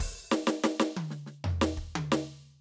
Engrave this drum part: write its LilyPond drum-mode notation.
\new DrumStaff \drummode { \time 4/4 \tempo 4 = 92 <bd hho>8 sn16 sn16 sn16 sn16 tommh16 sn16 sn16 tomfh16 sn16 bd16 tommh16 sn8. | }